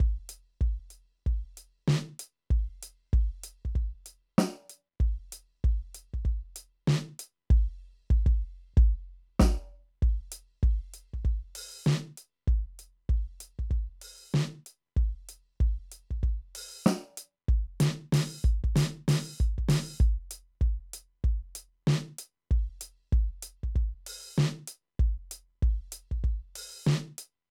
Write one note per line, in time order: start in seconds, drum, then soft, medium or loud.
0.00 kick medium
0.00 crash soft
0.29 closed hi-hat loud
0.61 kick medium
0.61 crash soft
0.90 closed hi-hat medium
1.26 kick medium
1.26 crash soft
1.57 closed hi-hat medium
1.88 snare loud
2.19 closed hi-hat loud
2.50 kick medium
2.55 crash soft
2.55 ride soft
2.82 closed hi-hat loud
3.13 kick medium
3.13 crash soft
3.43 closed hi-hat loud
3.65 kick soft
3.75 kick medium
4.06 closed hi-hat medium
4.38 snare loud
4.69 closed hi-hat medium
5.00 kick medium
5.04 crash soft
5.32 closed hi-hat loud
5.64 kick medium
5.64 crash soft
5.94 closed hi-hat loud
6.13 kick soft
6.25 kick medium
6.56 closed hi-hat loud
6.87 snare loud
7.19 closed hi-hat loud
7.50 kick medium
7.50 crash soft
8.10 kick medium
8.10 crash soft
8.15 ride soft
8.26 kick medium
8.26 crash soft
8.73 kick soft
8.77 kick loud
8.99 kick soft
9.39 kick medium
9.39 snare loud
10.02 kick medium
10.02 crash soft
10.32 closed hi-hat loud
10.63 kick medium
10.63 crash soft
10.67 ride soft
10.93 closed hi-hat medium
11.13 kick soft
11.24 kick medium
11.24 crash soft
11.55 open hi-hat loud
11.85 snare loud
11.85 hi-hat pedal medium
12.17 closed hi-hat medium
12.47 kick medium
12.79 closed hi-hat medium
13.09 kick medium
13.13 crash soft
13.40 closed hi-hat loud
13.59 kick soft
13.71 kick medium
14.01 open hi-hat medium
14.32 snare loud
14.32 hi-hat pedal medium
14.66 closed hi-hat medium
14.96 kick medium
15.01 crash soft
15.29 closed hi-hat loud
15.60 kick medium
15.64 crash soft
15.91 closed hi-hat medium
16.10 kick soft
16.23 kick medium
16.55 open hi-hat loud
16.85 snare loud
16.85 hi-hat pedal soft
17.17 closed hi-hat loud
17.48 kick medium
17.80 closed hi-hat loud
17.80 snare loud
18.12 open hi-hat loud
18.12 snare loud
18.43 kick medium
18.43 hi-hat pedal soft
18.64 kick medium
18.76 open hi-hat loud
18.76 snare loud
19.08 open hi-hat loud
19.08 snare loud
19.39 kick medium
19.39 hi-hat pedal soft
19.58 kick soft
19.68 open hi-hat loud
19.68 snare loud
19.97 kick medium
19.97 hi-hat pedal soft
20.31 closed hi-hat loud
20.61 kick medium
20.93 closed hi-hat loud
21.24 kick medium
21.55 closed hi-hat loud
21.87 snare loud
22.18 closed hi-hat loud
22.51 kick medium
22.55 crash soft
22.81 closed hi-hat loud
23.12 kick medium
23.42 closed hi-hat loud
23.63 kick soft
23.75 kick medium
24.06 open hi-hat loud
24.36 snare loud
24.36 hi-hat pedal medium
24.67 closed hi-hat loud
24.99 kick medium
25.31 closed hi-hat loud
25.62 kick medium
25.66 crash soft
25.92 closed hi-hat loud
26.11 kick soft
26.24 kick medium
26.55 open hi-hat loud
26.85 snare loud
26.85 hi-hat pedal medium
27.18 closed hi-hat loud